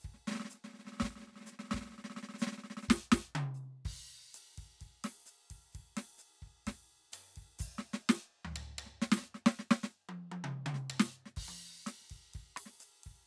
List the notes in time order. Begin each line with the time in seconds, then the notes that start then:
0.01 kick, hi-hat pedal
0.09 kick
0.14 snare
0.27 snare
0.31 snare
0.34 snare
0.40 snare
0.45 snare
0.49 snare, hi-hat pedal
0.54 snare
0.64 snare
0.67 snare
0.69 snare
0.73 snare
0.79 snare
0.85 snare
0.87 snare
0.92 snare
0.97 snare, hi-hat pedal
1.00 kick, snare
1.04 kick, snare
1.10 snare
1.16 snare
1.20 snare
1.22 snare
1.27 snare
1.32 snare
1.36 snare
1.41 snare
1.45 snare, hi-hat pedal
1.47 snare
1.52 snare
1.59 snare
1.63 snare
1.68 snare
1.71 kick, snare
1.76 kick, snare
1.81 snare
1.85 snare
1.90 snare
1.92 snare
1.98 snare
2.04 snare
2.10 snare
2.15 snare
2.16 snare
2.23 snare
2.29 snare
2.34 snare
2.38 snare, hi-hat pedal
2.47 snare
2.52 snare
2.58 snare
2.64 snare
2.70 snare
2.77 snare
2.82 snare, hi-hat pedal
2.89 kick, snare
3.12 kick, snare
3.35 mid tom
3.54 hi-hat pedal
3.85 kick, crash
3.91 kick
4.34 hi-hat pedal, ride
4.58 kick, ride
4.63 kick
4.80 kick, hi-hat pedal, ride
4.86 kick
5.04 snare, ride
5.26 hi-hat pedal
5.50 kick, ride
5.72 kick, hi-hat pedal, ride
5.80 kick
5.97 snare, ride
6.18 hi-hat pedal
6.42 kick, ride
6.47 kick
6.64 kick, snare, hi-hat pedal, ride
6.71 kick
6.89 ride
7.12 hi-hat pedal, ride, floor tom
7.36 kick, ride
7.42 kick
7.59 kick, hi-hat pedal, ride
7.78 snare
7.93 snare
8.09 snare
8.45 floor tom
8.56 floor tom
8.78 floor tom
8.86 snare
9.02 snare
9.12 snare
9.17 snare
9.21 snare
9.34 snare
9.46 snare
9.59 snare
9.71 snare
9.83 snare
10.09 high tom
10.32 high tom
10.44 mid tom
10.66 mid tom
10.74 snare
10.90 kick, floor tom
11.00 snare
11.26 snare
11.36 kick, crash
11.48 high tom
11.86 snare, hi-hat pedal, ride
12.01 snare
12.10 kick, ride
12.16 kick
12.33 kick, hi-hat pedal, ride
12.56 cross-stick, ride
12.66 snare
12.80 hi-hat pedal, ride
13.03 kick, ride
13.11 kick